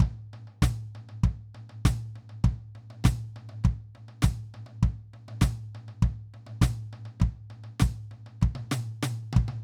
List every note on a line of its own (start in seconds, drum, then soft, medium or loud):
0.01 kick loud
0.01 mid tom medium
0.34 mid tom medium
0.48 mid tom soft
0.63 kick loud
0.63 snare loud
0.63 mid tom loud
0.96 mid tom medium
1.10 mid tom medium
1.24 kick loud
1.24 mid tom medium
1.55 mid tom medium
1.70 mid tom medium
1.86 kick loud
1.86 snare loud
1.86 mid tom loud
2.17 mid tom medium
2.30 mid tom soft
2.45 kick loud
2.45 mid tom medium
2.76 mid tom medium
2.91 mid tom medium
3.05 kick loud
3.05 snare loud
3.05 mid tom loud
3.37 mid tom medium
3.50 mid tom medium
3.65 kick loud
3.65 mid tom medium
3.96 mid tom soft
4.09 mid tom medium
4.23 kick loud
4.23 snare loud
4.23 mid tom loud
4.55 mid tom medium
4.67 mid tom medium
4.84 kick loud
4.84 mid tom medium
5.14 mid tom medium
5.29 mid tom medium
5.42 kick loud
5.42 snare loud
5.42 mid tom loud
5.76 mid tom medium
5.89 mid tom medium
6.03 kick loud
6.03 mid tom medium
6.35 mid tom medium
6.48 mid tom medium
6.62 kick loud
6.62 snare loud
6.62 mid tom loud
6.94 mid tom medium
7.06 mid tom medium
7.21 kick loud
7.21 mid tom medium
7.51 mid tom medium
7.65 mid tom medium
7.81 kick loud
7.81 snare loud
7.81 mid tom loud
8.12 mid tom medium
8.27 mid tom medium
8.43 kick loud
8.43 mid tom medium
8.56 mid tom medium
8.72 snare loud
8.72 mid tom loud
9.04 snare loud
9.04 mid tom loud
9.34 kick loud
9.34 mid tom loud
9.49 mid tom medium